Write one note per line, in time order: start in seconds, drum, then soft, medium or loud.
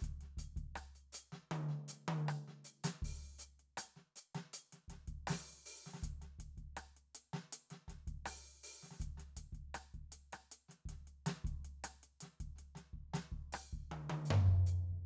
0.01 kick soft
0.01 closed hi-hat soft
0.01 hi-hat pedal soft
0.21 snare soft
0.21 closed hi-hat soft
0.37 closed hi-hat medium
0.37 kick soft
0.56 kick soft
0.56 closed hi-hat soft
0.75 cross-stick medium
0.75 closed hi-hat soft
0.95 closed hi-hat soft
1.12 closed hi-hat medium
1.12 hi-hat pedal medium
1.32 snare soft
1.51 hi-hat pedal soft
1.51 high tom loud
1.69 snare soft
1.88 snare soft
1.88 hi-hat pedal medium
2.08 high tom loud
2.28 cross-stick medium
2.48 snare soft
2.64 closed hi-hat soft
2.64 hi-hat pedal medium
2.84 closed hi-hat medium
2.84 snare medium
3.02 open hi-hat medium
3.02 kick soft
3.16 snare soft
3.39 closed hi-hat soft
3.39 hi-hat pedal medium
3.59 closed hi-hat soft
3.77 closed hi-hat medium
3.77 cross-stick medium
3.96 snare soft
4.16 hi-hat pedal medium
4.16 open hi-hat soft
4.35 snare soft
4.35 closed hi-hat soft
4.53 closed hi-hat medium
4.72 snare soft
4.72 closed hi-hat soft
4.88 kick soft
4.88 snare soft
4.88 closed hi-hat soft
5.08 kick soft
5.08 closed hi-hat soft
5.27 open hi-hat medium
5.27 cross-stick medium
5.27 snare medium
5.52 snare soft
5.55 snare soft
5.66 open hi-hat medium
5.86 snare soft
5.93 snare soft
5.99 snare soft
5.99 hi-hat pedal soft
6.03 kick soft
6.03 closed hi-hat medium
6.21 snare soft
6.21 closed hi-hat soft
6.39 kick soft
6.39 closed hi-hat soft
6.58 kick soft
6.58 closed hi-hat soft
6.77 cross-stick medium
6.77 closed hi-hat soft
6.96 closed hi-hat soft
7.15 closed hi-hat medium
7.33 snare soft
7.33 closed hi-hat soft
7.53 closed hi-hat medium
7.70 snare soft
7.70 closed hi-hat soft
7.88 kick soft
7.88 snare soft
7.88 closed hi-hat soft
8.07 kick soft
8.07 closed hi-hat soft
8.25 open hi-hat medium
8.25 cross-stick medium
8.63 open hi-hat medium
8.83 snare soft
8.91 snare soft
8.96 kick soft
8.96 snare soft
8.96 hi-hat pedal soft
9.02 closed hi-hat soft
9.17 snare soft
9.17 closed hi-hat soft
9.37 kick soft
9.37 closed hi-hat medium
9.53 kick soft
9.53 closed hi-hat soft
9.74 cross-stick medium
9.74 closed hi-hat medium
9.94 kick soft
9.94 closed hi-hat soft
10.12 closed hi-hat medium
10.33 cross-stick medium
10.33 closed hi-hat soft
10.51 closed hi-hat medium
10.68 snare soft
10.68 closed hi-hat soft
10.85 kick soft
10.85 snare soft
10.85 closed hi-hat soft
11.07 closed hi-hat soft
11.26 snare medium
11.26 closed hi-hat medium
11.44 kick soft
11.44 closed hi-hat soft
11.65 closed hi-hat soft
11.84 cross-stick medium
11.84 closed hi-hat medium
12.03 closed hi-hat soft
12.20 snare soft
12.20 closed hi-hat medium
12.40 kick soft
12.40 closed hi-hat soft
12.56 snare soft
12.56 closed hi-hat soft
12.75 snare soft
12.75 closed hi-hat soft
12.93 kick soft
13.14 snare medium
13.14 closed hi-hat medium
13.32 kick soft
13.53 cross-stick medium
13.53 open hi-hat medium
13.73 kick soft
13.91 high tom medium
14.10 high tom loud
14.25 hi-hat pedal medium
14.30 floor tom loud
14.48 kick soft
14.66 hi-hat pedal medium
14.90 kick soft